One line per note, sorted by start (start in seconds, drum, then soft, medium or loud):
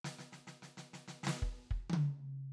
0.04 snare medium
0.18 snare soft
0.32 snare soft
0.47 snare soft
0.62 snare soft
0.77 snare soft
0.93 snare soft
1.08 snare soft
1.23 snare medium
1.27 snare loud
1.42 kick soft
1.71 kick soft
1.90 high tom medium
1.93 high tom loud